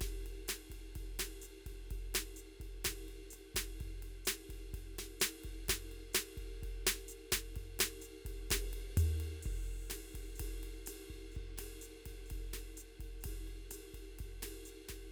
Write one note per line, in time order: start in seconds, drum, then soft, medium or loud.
0.01 kick soft
0.01 snare medium
0.01 ride medium
0.07 kick soft
0.26 ride soft
0.48 snare medium
0.48 hi-hat pedal medium
0.48 ride medium
0.70 kick soft
0.70 ride soft
0.75 kick soft
0.95 kick soft
0.95 ride soft
1.01 kick soft
1.19 snare medium
1.19 ride medium
1.42 hi-hat pedal medium
1.42 ride soft
1.66 kick soft
1.66 ride soft
1.71 kick soft
1.85 snare soft
1.91 kick soft
1.91 ride soft
1.97 kick soft
2.14 snare medium
2.14 ride medium
2.36 hi-hat pedal medium
2.36 ride soft
2.60 kick soft
2.60 ride soft
2.65 kick soft
2.85 kick soft
2.85 snare medium
2.85 ride medium
2.92 kick soft
3.08 ride soft
3.31 hi-hat pedal medium
3.31 ride soft
3.55 kick soft
3.55 snare medium
3.55 ride medium
3.60 kick soft
3.80 kick soft
3.80 ride soft
3.87 kick soft
3.93 snare soft
4.02 ride soft
4.25 snare medium
4.25 hi-hat pedal medium
4.25 ride medium
4.49 kick soft
4.49 ride soft
4.55 kick soft
4.74 kick soft
4.74 ride soft
4.79 kick soft
4.99 snare medium
4.99 ride medium
5.20 snare loud
5.20 hi-hat pedal medium
5.20 ride medium
5.44 kick soft
5.44 ride soft
5.50 kick soft
5.64 hi-hat pedal soft
5.69 kick soft
5.69 snare medium
5.69 ride medium
5.75 kick soft
5.92 ride soft
6.14 snare loud
6.14 hi-hat pedal medium
6.14 ride medium
6.37 kick soft
6.37 ride soft
6.42 kick soft
6.63 kick soft
6.63 ride soft
6.69 kick soft
6.87 snare loud
6.87 ride medium
6.95 snare soft
7.08 hi-hat pedal medium
7.08 ride soft
7.32 kick soft
7.32 snare loud
7.32 ride medium
7.38 kick soft
7.56 kick soft
7.56 ride soft
7.62 kick soft
7.79 snare loud
7.79 ride medium
8.02 hi-hat pedal medium
8.02 ride soft
8.25 kick soft
8.25 ride medium
8.31 kick soft
8.51 kick soft
8.51 snare medium
8.51 ride medium
8.57 kick soft
8.73 ride medium
8.97 floor tom loud
8.97 hi-hat pedal medium
8.97 ride medium
9.20 ride soft
9.43 kick soft
9.43 crash medium
9.52 kick soft
9.89 snare soft
9.89 hi-hat pedal medium
9.89 ride medium
10.15 kick soft
10.15 ride soft
10.20 kick soft
10.36 snare soft
10.36 hi-hat pedal medium
10.40 kick soft
10.40 ride medium
10.46 kick soft
10.63 ride soft
10.86 snare soft
10.86 hi-hat pedal medium
10.86 ride medium
11.10 kick soft
11.10 ride soft
11.15 kick soft
11.32 hi-hat pedal soft
11.32 ride soft
11.37 kick soft
11.37 mid tom soft
11.42 kick soft
11.58 snare soft
11.58 ride medium
11.81 hi-hat pedal medium
11.81 ride soft
12.06 kick soft
12.06 ride soft
12.11 kick soft
12.26 hi-hat pedal soft
12.30 kick soft
12.30 ride soft
12.37 kick soft
12.53 snare soft
12.53 ride medium
12.77 hi-hat pedal medium
12.77 ride soft
13.00 kick soft
13.00 ride soft
13.05 kick soft
13.21 snare soft
13.21 hi-hat pedal soft
13.21 ride medium
13.26 kick soft
13.31 kick soft
13.48 ride soft
13.71 snare soft
13.71 hi-hat pedal medium
13.71 ride medium
13.94 kick soft
13.94 ride soft
14.19 kick soft
14.19 ride soft
14.26 kick soft
14.42 snare soft
14.42 ride medium
14.65 hi-hat pedal medium
14.65 ride soft
14.88 kick soft
14.88 snare soft
14.88 ride medium